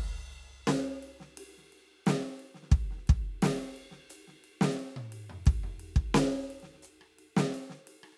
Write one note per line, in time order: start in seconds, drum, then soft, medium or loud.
0.13 floor tom soft
0.33 ride bell soft
0.68 snare loud
0.68 ride medium
1.03 ride medium
1.21 snare soft
1.38 ride loud
1.58 snare soft
1.64 snare soft
1.73 ride soft
2.07 snare loud
2.07 ride medium
2.40 ride soft
2.48 ride soft
2.55 snare soft
2.63 snare soft
2.70 kick loud
2.70 snare soft
2.70 ride soft
2.91 snare soft
2.97 snare soft
3.08 kick loud
3.08 ride soft
3.43 snare loud
3.43 ride loud
3.48 hi-hat pedal soft
3.77 ride soft
3.92 snare soft
4.10 hi-hat pedal medium
4.10 ride medium
4.28 snare soft
4.45 ride soft
4.62 snare loud
4.71 hi-hat pedal medium
4.80 ride soft
4.97 high tom medium
5.13 ride medium
5.30 mid tom medium
5.46 kick loud
5.46 ride medium
5.64 mid tom soft
5.80 ride medium
5.96 kick loud
6.15 snare loud
6.15 ride medium
6.26 snare soft
6.47 hi-hat pedal soft
6.51 ride medium
6.61 snare soft
6.61 ride soft
6.71 cross-stick soft
6.71 snare soft
6.83 hi-hat pedal medium
6.83 ride soft
7.02 cross-stick soft
7.19 ride soft
7.37 snare loud
7.55 ride bell medium
7.70 snare soft
7.88 ride medium
8.04 cross-stick soft
8.13 cross-stick soft